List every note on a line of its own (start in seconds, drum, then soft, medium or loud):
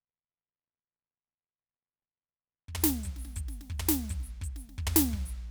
2.68 kick soft
2.75 floor tom loud
2.80 snare loud
2.80 hi-hat pedal soft
3.03 closed hi-hat medium
3.03 kick soft
3.16 snare soft
3.16 hi-hat pedal medium
3.25 snare soft
3.36 closed hi-hat medium
3.36 kick soft
3.48 snare soft
3.48 hi-hat pedal medium
3.61 snare soft
3.70 kick soft
3.78 floor tom loud
3.78 hi-hat pedal soft
3.89 snare loud
4.09 closed hi-hat medium
4.09 kick soft
4.20 snare soft
4.20 hi-hat pedal medium
4.41 closed hi-hat medium
4.41 kick soft
4.56 snare soft
4.56 hi-hat pedal medium
4.69 snare soft
4.78 kick soft
4.87 floor tom loud
4.96 snare loud
5.13 kick soft
5.26 hi-hat pedal medium